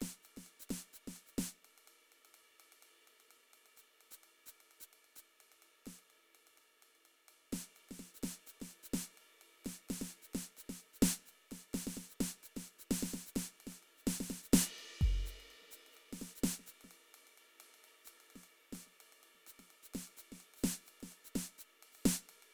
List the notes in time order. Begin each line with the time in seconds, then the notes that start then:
0.01 snare, ride
0.23 hi-hat pedal, ride
0.37 snare, ride
0.46 ride
0.59 hi-hat pedal
0.69 snare, ride
0.82 ride
0.93 hi-hat pedal, ride
1.07 snare
1.16 ride
1.26 hi-hat pedal, ride
1.38 snare, ride
1.65 ride
1.78 ride
1.88 ride
2.12 ride
2.25 ride
2.34 ride
2.60 ride
2.72 ride
2.83 ride
3.07 ride
3.20 ride
3.31 ride
3.53 ride
3.66 ride
3.76 hi-hat pedal, ride
4.01 ride
4.11 hi-hat pedal, ride
4.23 ride
4.46 hi-hat pedal, ride
4.60 ride
4.71 ride
4.80 hi-hat pedal
4.93 ride
5.04 ride
5.16 hi-hat pedal, ride
5.40 ride
5.52 ride
5.62 ride
5.86 snare, ride
5.99 ride
6.10 ride
6.35 ride
6.47 ride
6.58 ride
6.82 ride
6.95 ride
7.05 ride
7.28 ride
7.53 snare, ride
7.75 hi-hat pedal, ride
7.89 snare, ride
7.99 snare, ride
8.14 hi-hat pedal
8.23 snare, ride
8.46 hi-hat pedal, ride
8.60 snare, ride
8.71 ride
8.83 hi-hat pedal
8.94 snare, ride
9.17 ride
9.41 ride
9.65 snare, ride
9.89 snare, ride
10.00 snare, ride
10.11 ride
10.22 hi-hat pedal
10.34 snare, ride
10.57 hi-hat pedal, ride
10.69 snare, ride
10.93 hi-hat pedal
11.02 snare, ride
11.26 hi-hat pedal, ride
11.51 snare, ride
11.73 snare, ride
11.87 snare
11.94 snare, ride
12.09 hi-hat pedal
12.20 snare, ride
12.43 hi-hat pedal, ride
12.56 snare, ride
12.68 ride
12.79 hi-hat pedal
12.91 snare, ride
13.03 snare
13.11 snare, ride
13.26 hi-hat pedal
13.36 snare, ride
13.60 ride
13.67 snare
13.72 ride
13.83 ride
13.97 hi-hat pedal
14.07 snare, ride
14.20 snare
14.29 snare, ride
14.43 hi-hat pedal
14.53 snare, ride
14.78 ride
15.01 kick, ride
15.20 snare
15.26 hi-hat pedal, ride
15.40 ride
15.50 ride
15.61 snare
15.71 hi-hat pedal, ride
15.86 ride
15.92 hi-hat pedal
15.97 ride
16.13 snare, ride
16.21 snare, ride
16.35 hi-hat pedal
16.44 snare, ride
16.59 snare
16.66 hi-hat pedal, ride
16.81 snare, ride
16.91 ride
17.14 ride
17.27 ride
17.38 ride
17.60 ride
17.74 ride
18.05 hi-hat pedal, ride
18.20 ride
18.36 snare
18.44 ride
18.73 snare, ride
18.87 snare
19.00 ride
19.12 ride
19.23 ride
19.35 snare
19.47 hi-hat pedal, ride
19.59 snare, ride
19.70 ride
19.83 hi-hat pedal
19.94 snare, ride
20.07 ride
20.17 hi-hat pedal, ride
20.32 snare
20.40 ride
20.54 hi-hat pedal, ride
20.64 snare, ride
20.85 hi-hat pedal, ride
21.00 snare, ride
21.12 ride
21.24 hi-hat pedal
21.35 snare, ride
21.48 ride
21.58 hi-hat pedal, ride
21.83 ride
21.92 hi-hat pedal, ride
22.05 snare, ride
22.29 ride
22.42 ride